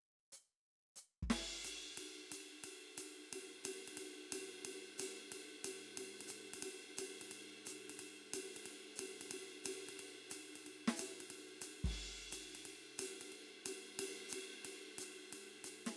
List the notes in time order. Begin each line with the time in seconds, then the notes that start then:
0.32 hi-hat pedal
0.96 hi-hat pedal
1.22 kick
1.30 snare, ride
1.65 hi-hat pedal, ride
1.97 ride
2.32 hi-hat pedal, ride
2.64 ride
2.97 hi-hat pedal, ride
3.33 ride
3.64 hi-hat pedal, ride
3.88 ride
3.97 ride
4.32 hi-hat pedal, ride
4.65 ride
4.98 hi-hat pedal, ride
5.32 ride
5.64 hi-hat pedal, ride
5.97 ride
6.21 ride
6.27 hi-hat pedal, ride
6.53 ride
6.62 ride
6.97 hi-hat pedal, ride
7.21 ride
7.31 ride
7.65 hi-hat pedal, ride
7.89 ride
7.99 ride
8.33 hi-hat pedal, ride
8.53 hi-hat pedal, ride
8.66 ride
8.96 hi-hat pedal, ride
9.21 ride
9.31 ride
9.64 hi-hat pedal, ride
9.89 ride
9.99 ride
10.30 hi-hat pedal, ride
10.55 ride
10.66 ride
10.87 snare
10.96 hi-hat pedal, ride
11.20 ride
11.30 ride
11.57 snare
11.61 hi-hat pedal, ride
11.84 kick, ride
12.31 hi-hat pedal, ride
12.55 ride
12.65 ride
12.98 hi-hat pedal, ride
13.18 hi-hat pedal, ride
13.32 ride
13.65 hi-hat pedal, ride
13.99 ride
14.29 hi-hat pedal, ride
14.65 ride
14.98 hi-hat pedal, ride
15.32 ride
15.56 snare
15.64 hi-hat pedal, ride
15.86 snare, ride